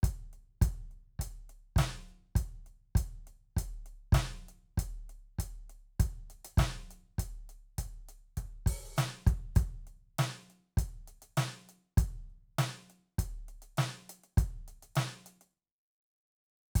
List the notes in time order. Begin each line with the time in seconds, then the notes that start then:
0.03 kick, closed hi-hat
0.33 closed hi-hat
0.61 kick, closed hi-hat
0.91 closed hi-hat
1.19 kick, closed hi-hat
1.49 closed hi-hat
1.76 kick, snare, closed hi-hat
2.08 closed hi-hat
2.35 kick, closed hi-hat
2.66 closed hi-hat
2.95 kick, closed hi-hat
3.27 closed hi-hat
3.57 kick, closed hi-hat
3.86 closed hi-hat
4.12 kick, snare, closed hi-hat
4.48 closed hi-hat
4.78 kick, closed hi-hat
5.09 closed hi-hat
5.39 kick, closed hi-hat
5.70 closed hi-hat
6.00 kick, closed hi-hat
6.30 closed hi-hat
6.45 closed hi-hat
6.57 kick, snare, closed hi-hat
6.91 closed hi-hat
7.18 kick, closed hi-hat
7.49 closed hi-hat
7.78 kick, closed hi-hat
8.09 closed hi-hat
8.37 kick, closed hi-hat
8.66 kick, open hi-hat
8.96 snare, closed hi-hat, hi-hat pedal
9.27 kick, open hi-hat
9.55 kick, closed hi-hat, hi-hat pedal
9.87 closed hi-hat
10.18 snare, closed hi-hat
10.50 closed hi-hat
10.77 kick, closed hi-hat
11.08 closed hi-hat
11.22 closed hi-hat
11.37 snare, closed hi-hat
11.69 closed hi-hat
11.97 kick, closed hi-hat
12.30 closed hi-hat
12.58 snare, closed hi-hat
12.90 closed hi-hat
13.18 kick, closed hi-hat
13.48 closed hi-hat
13.62 closed hi-hat
13.77 snare, closed hi-hat
14.09 closed hi-hat
14.24 closed hi-hat
14.37 kick, closed hi-hat
14.68 closed hi-hat
14.83 closed hi-hat
14.96 snare, closed hi-hat
15.26 closed hi-hat
15.41 closed hi-hat
16.75 closed hi-hat, kick